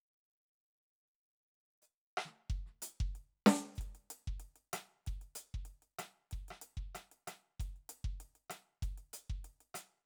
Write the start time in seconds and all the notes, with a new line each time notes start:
1.82 hi-hat pedal
2.17 cross-stick
2.25 snare
2.50 kick, closed hi-hat
2.66 snare
2.82 closed hi-hat
3.00 kick
3.15 closed hi-hat
3.46 snare, open hi-hat
3.63 snare
3.75 kick, hi-hat pedal
3.81 closed hi-hat
3.95 closed hi-hat
4.10 closed hi-hat
4.27 kick
4.40 closed hi-hat
4.56 closed hi-hat
4.73 cross-stick, closed hi-hat
5.06 kick, closed hi-hat
5.21 closed hi-hat
5.35 closed hi-hat
5.54 kick
5.65 closed hi-hat
5.82 closed hi-hat
5.99 cross-stick, closed hi-hat
6.31 kick, closed hi-hat
6.48 cross-stick, closed hi-hat
6.61 closed hi-hat
6.77 kick
6.95 cross-stick, closed hi-hat
7.11 closed hi-hat
7.27 cross-stick, closed hi-hat
7.59 kick, closed hi-hat
7.76 closed hi-hat
7.89 closed hi-hat
8.04 kick
8.20 closed hi-hat
8.35 closed hi-hat
8.50 cross-stick, closed hi-hat
8.82 kick, closed hi-hat
8.97 closed hi-hat
9.13 closed hi-hat
9.29 kick
9.44 closed hi-hat
9.60 closed hi-hat
9.74 closed hi-hat, cross-stick